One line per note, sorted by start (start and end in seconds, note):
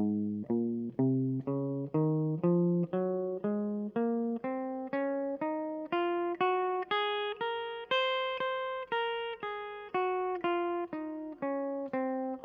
0.00 0.48 G#2
0.52 0.93 A#2
1.00 1.44 C3
1.49 1.89 C#3
1.96 2.40 D#3
2.44 2.88 F3
2.94 3.41 F#3
3.45 3.91 G#3
3.97 4.40 A#3
4.45 4.91 C4
4.93 5.39 C#4
5.42 5.90 D#4
5.93 6.38 F4
6.41 6.85 F#4
6.91 7.38 G#4
7.41 7.87 A#4
7.91 8.40 C5
8.41 8.86 C5
8.92 9.38 A#4
9.43 9.90 G#4
9.95 10.42 F#4
10.44 10.88 F4
10.93 11.37 D#4
11.43 11.91 C#4
11.94 12.37 C4